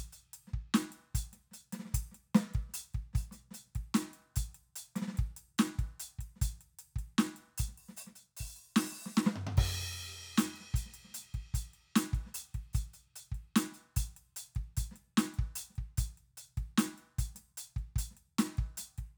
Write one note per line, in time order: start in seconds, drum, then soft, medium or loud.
0.13 closed hi-hat medium
0.34 closed hi-hat medium
0.48 snare soft
0.54 kick medium
0.74 closed hi-hat medium
0.74 snare loud
0.93 closed hi-hat soft
1.15 closed hi-hat loud
1.15 kick medium
1.33 snare soft
1.33 closed hi-hat soft
1.52 closed hi-hat medium
1.52 snare soft
1.73 snare medium
1.73 closed hi-hat medium
1.80 snare soft
1.86 snare soft
1.91 kick medium
1.91 snare soft
1.91 closed hi-hat loud
2.12 snare soft
2.12 closed hi-hat soft
2.35 closed hi-hat medium
2.35 snare loud
2.54 kick medium
2.54 closed hi-hat soft
2.69 snare soft
2.74 closed hi-hat loud
2.94 kick medium
2.94 closed hi-hat soft
3.14 open hi-hat medium
3.14 kick medium
3.14 snare soft
3.32 closed hi-hat soft
3.32 snare soft
3.51 closed hi-hat medium
3.51 snare soft
3.76 kick medium
3.76 closed hi-hat soft
3.95 closed hi-hat loud
3.95 snare loud
4.14 closed hi-hat soft
4.36 closed hi-hat loud
4.36 kick medium
4.55 closed hi-hat soft
4.76 closed hi-hat loud
4.96 snare medium
4.96 closed hi-hat medium
5.02 snare medium
5.08 snare medium
5.14 snare soft
5.14 closed hi-hat soft
5.19 kick medium
5.37 closed hi-hat medium
5.59 closed hi-hat loud
5.59 snare loud
5.79 kick medium
5.79 closed hi-hat soft
6.00 closed hi-hat loud
6.19 kick soft
6.19 closed hi-hat soft
6.36 snare soft
6.42 closed hi-hat loud
6.42 kick medium
6.61 closed hi-hat soft
6.79 closed hi-hat medium
6.96 kick medium
6.96 closed hi-hat soft
7.19 closed hi-hat medium
7.19 snare loud
7.37 closed hi-hat soft
7.49 snare soft
7.58 closed hi-hat loud
7.58 kick medium
7.69 snare soft
7.78 open hi-hat soft
7.89 snare soft
7.97 open hi-hat loud
7.97 hi-hat pedal medium
8.07 snare soft
8.16 closed hi-hat medium
8.37 open hi-hat loud
8.37 kick soft
8.57 open hi-hat soft
8.77 open hi-hat loud
8.77 snare loud
8.95 open hi-hat medium
9.06 snare soft
9.15 snare loud
9.15 hi-hat pedal soft
9.27 snare loud
9.36 floor tom medium
9.47 floor tom loud
9.58 kick loud
9.58 crash loud
10.02 open hi-hat soft
10.38 closed hi-hat loud
10.38 snare loud
10.38 hi-hat pedal medium
10.56 closed hi-hat soft
10.61 snare soft
10.75 closed hi-hat medium
10.75 kick medium
10.86 snare soft
10.91 snare soft
10.91 closed hi-hat medium
11.05 snare soft
11.08 snare soft
11.12 snare soft
11.14 closed hi-hat loud
11.14 snare soft
11.18 snare soft
11.35 kick soft
11.35 closed hi-hat soft
11.54 closed hi-hat loud
11.54 kick medium
11.74 closed hi-hat soft
11.96 closed hi-hat loud
11.96 snare loud
12.14 kick medium
12.14 open hi-hat soft
12.27 snare soft
12.35 closed hi-hat loud
12.55 kick soft
12.55 closed hi-hat soft
12.74 closed hi-hat medium
12.74 kick medium
12.74 hi-hat pedal medium
12.94 closed hi-hat soft
13.16 closed hi-hat medium
13.32 kick soft
13.32 closed hi-hat soft
13.56 closed hi-hat loud
13.56 snare loud
13.74 closed hi-hat soft
13.97 closed hi-hat loud
13.97 kick medium
14.17 closed hi-hat soft
14.37 closed hi-hat loud
14.56 kick medium
14.56 closed hi-hat soft
14.77 closed hi-hat loud
14.77 kick medium
14.92 snare soft
14.96 closed hi-hat soft
15.18 closed hi-hat loud
15.18 snare loud
15.35 closed hi-hat soft
15.39 kick medium
15.56 closed hi-hat loud
15.70 snare soft
15.76 kick soft
15.76 closed hi-hat soft
15.98 closed hi-hat loud
15.98 kick medium
16.18 closed hi-hat soft
16.38 closed hi-hat medium
16.58 kick medium
16.58 closed hi-hat soft
16.78 closed hi-hat loud
16.78 snare loud
16.98 closed hi-hat soft
17.19 closed hi-hat loud
17.19 kick medium
17.36 snare soft
17.36 closed hi-hat medium
17.58 closed hi-hat loud
17.77 kick medium
17.77 closed hi-hat soft
17.96 closed hi-hat loud
17.96 kick medium
18.11 snare soft
18.17 closed hi-hat soft
18.39 closed hi-hat loud
18.39 snare loud
18.58 kick medium
18.58 closed hi-hat soft
18.78 closed hi-hat loud
18.78 snare soft
18.98 kick soft
18.98 closed hi-hat soft